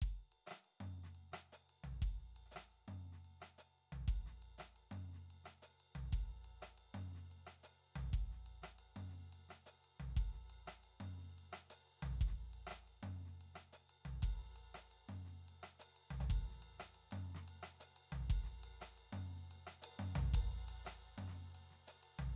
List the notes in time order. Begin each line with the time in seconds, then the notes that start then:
0.02 kick, ride
0.32 ride
0.46 cross-stick, hi-hat pedal
0.51 cross-stick
0.64 ride
0.80 mid tom, ride
1.03 snare
1.15 ride
1.32 cross-stick, snare
1.52 hi-hat pedal, ride
1.69 ride
1.83 floor tom
2.02 kick, ride
2.18 snare
2.36 ride
2.46 cross-stick
2.51 snare, hi-hat pedal
2.72 ride
2.88 mid tom, ride
3.12 snare
3.24 ride
3.40 cross-stick, snare
3.58 hi-hat pedal, ride
3.78 ride
3.92 floor tom
4.08 kick, ride
4.26 snare
4.42 ride
4.58 cross-stick, snare, hi-hat pedal
4.76 ride
4.91 mid tom, ride
5.13 snare
5.30 ride
5.44 cross-stick, snare
5.62 hi-hat pedal, ride
5.80 ride
5.95 floor tom
6.12 kick, ride
6.44 ride
6.61 cross-stick, snare, hi-hat pedal
6.78 ride
6.94 mid tom, ride
7.15 snare
7.31 ride
7.45 cross-stick, snare
7.63 hi-hat pedal, ride
7.95 floor tom, ride
8.13 kick, ride
8.31 snare
8.46 ride
8.62 cross-stick, snare, hi-hat pedal
8.78 ride
8.96 mid tom, ride
9.09 snare
9.32 ride
9.49 cross-stick, snare
9.66 hi-hat pedal, ride
9.84 ride
9.99 floor tom
10.16 kick, ride
10.32 snare
10.50 ride
10.66 cross-stick, snare, hi-hat pedal
10.83 ride
11.00 mid tom, ride
11.18 snare
11.38 ride
11.52 cross-stick, snare
11.70 hi-hat pedal, ride
12.02 floor tom, ride
12.21 kick, ride
12.27 snare
12.53 ride
12.67 cross-stick, hi-hat pedal
12.71 cross-stick
12.87 ride
13.03 mid tom, ride
13.25 snare
13.41 ride
13.54 cross-stick, snare
13.72 hi-hat pedal, ride
13.89 ride
14.05 floor tom
14.22 kick, ride
14.42 snare
14.56 ride
14.73 cross-stick, snare, hi-hat pedal
14.91 ride
15.08 mid tom, ride
15.25 snare
15.48 ride
15.62 cross-stick, snare
15.79 hi-hat pedal, ride
15.96 ride
16.10 floor tom
16.20 floor tom
16.30 kick, ride
16.50 snare
16.62 ride
16.78 cross-stick, snare, hi-hat pedal
16.94 ride
17.11 mid tom, ride
17.34 snare
17.48 ride
17.63 cross-stick
17.73 snare
17.80 hi-hat pedal, ride
17.96 ride
18.12 floor tom
18.30 kick, ride
18.43 snare
18.63 ride
18.80 cross-stick, snare, hi-hat pedal
18.97 ride
19.12 mid tom, ride
19.36 snare
19.51 ride
19.66 cross-stick, snare
19.82 hi-hat pedal, ride
19.99 mid tom
20.15 floor tom
20.33 kick, snare, ride
20.68 ride
20.85 cross-stick, snare, hi-hat pedal
21.02 ride
21.18 mid tom, ride
21.28 snare
21.34 hi-hat pedal
21.55 ride
21.70 snare
21.87 hi-hat pedal, ride
22.03 ride
22.19 floor tom